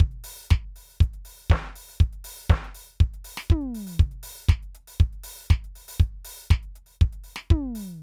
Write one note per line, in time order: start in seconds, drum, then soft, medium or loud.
0.01 kick loud
0.01 closed hi-hat soft
0.12 closed hi-hat soft
0.25 open hi-hat loud
0.39 open hi-hat medium
0.45 hi-hat pedal soft
0.51 kick loud
0.51 snare loud
0.77 open hi-hat medium
0.91 open hi-hat soft
0.97 hi-hat pedal soft
1.01 kick loud
1.01 closed hi-hat medium
1.14 closed hi-hat soft
1.26 open hi-hat medium
1.39 open hi-hat soft
1.51 kick loud
1.51 snare loud
1.65 closed hi-hat soft
1.76 open hi-hat medium
1.90 open hi-hat medium
1.96 hi-hat pedal soft
2.01 kick loud
2.01 closed hi-hat medium
2.14 closed hi-hat soft
2.25 open hi-hat loud
2.40 open hi-hat soft
2.46 hi-hat pedal soft
2.51 kick loud
2.51 snare loud
2.65 closed hi-hat soft
2.75 open hi-hat medium
2.90 open hi-hat soft
2.97 kick loud
2.97 hi-hat pedal soft
3.03 closed hi-hat soft
3.15 closed hi-hat soft
3.25 open hi-hat loud
3.38 snare loud
3.46 hi-hat pedal soft
3.51 kick loud
3.51 floor tom loud
3.62 closed hi-hat soft
3.75 open hi-hat medium
3.88 open hi-hat medium
3.95 hi-hat pedal soft
4.00 kick loud
4.00 closed hi-hat soft
4.12 closed hi-hat soft
4.24 open hi-hat loud
4.36 open hi-hat soft
4.45 hi-hat pedal soft
4.50 kick loud
4.50 snare loud
4.64 closed hi-hat soft
4.76 open hi-hat medium
4.88 open hi-hat medium
4.94 hi-hat pedal soft
5.01 kick loud
5.01 closed hi-hat soft
5.14 closed hi-hat soft
5.24 open hi-hat loud
5.39 open hi-hat medium
5.46 hi-hat pedal soft
5.51 kick loud
5.51 snare loud
5.65 closed hi-hat soft
5.76 open hi-hat medium
5.89 open hi-hat loud
5.95 hi-hat pedal soft
6.01 kick loud
6.01 closed hi-hat medium
6.26 open hi-hat loud
6.39 open hi-hat soft
6.46 hi-hat pedal soft
6.51 kick loud
6.51 snare loud
6.64 closed hi-hat soft
6.76 open hi-hat medium
6.87 open hi-hat soft
6.96 hi-hat pedal soft
7.02 kick loud
7.02 closed hi-hat soft
7.13 closed hi-hat medium
7.25 open hi-hat medium
7.37 snare loud
7.45 hi-hat pedal soft
7.51 kick loud
7.51 floor tom loud
7.76 open hi-hat loud
7.98 hi-hat pedal soft